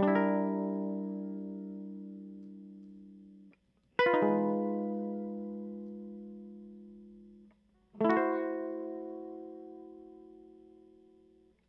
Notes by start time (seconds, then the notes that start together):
0.00 G3 D4
0.08 E4
0.16 A#4
4.00 B4
4.07 F4
4.14 D#4
4.23 G#3
8.02 A3 E4
8.10 F#4
8.17 C5